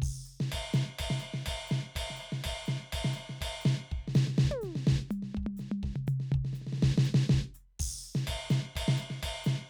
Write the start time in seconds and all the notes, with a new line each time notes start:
0.01 kick, floor tom, crash
0.25 hi-hat pedal
0.40 snare
0.52 kick, ride
0.59 kick
0.73 snare, hi-hat pedal
0.99 kick, ride bell
1.05 kick
1.10 snare
1.19 hi-hat pedal, ride
1.34 snare
1.46 kick, ride bell
1.67 hi-hat pedal
1.71 snare
1.95 kick, ride bell
2.01 kick
2.10 snare
2.16 hi-hat pedal
2.20 ride
2.32 snare
2.44 kick, ride bell
2.51 kick
2.65 snare, hi-hat pedal
2.92 kick, ride bell
3.04 snare
3.13 hi-hat pedal
3.17 ride
3.29 snare
3.41 kick, ride bell
3.46 kick
3.61 hi-hat pedal
3.65 snare
3.91 kick
3.98 kick
4.08 snare
4.14 snare, hi-hat pedal
4.27 snare
4.38 snare
4.44 kick
4.50 kick, high tom
4.61 snare, hi-hat pedal
4.75 snare
4.87 snare
4.91 kick
4.98 kick, snare
5.10 hi-hat pedal, mid tom
5.22 snare
5.35 kick, mid tom
5.43 kick, mid tom
5.57 snare, hi-hat pedal
5.71 mid tom
5.83 kick, snare
5.89 kick
5.96 floor tom
6.07 hi-hat pedal, floor tom
6.20 snare
6.32 kick, floor tom
6.45 snare
6.53 snare, hi-hat pedal
6.61 snare
6.67 snare
6.73 snare
6.78 snare
6.82 kick, snare
6.90 kick
6.98 snare
7.04 hi-hat pedal
7.14 snare
7.29 kick, snare
7.39 kick
7.54 hi-hat pedal
7.79 kick, crash
7.86 kick
7.91 kick
8.03 hi-hat pedal
8.15 snare
8.27 kick, ride bell
8.34 kick
8.50 snare, hi-hat pedal
8.76 kick, ride bell
8.82 kick
8.88 snare
8.97 hi-hat pedal, ride
9.10 snare
9.23 kick, ride bell
9.44 snare, hi-hat pedal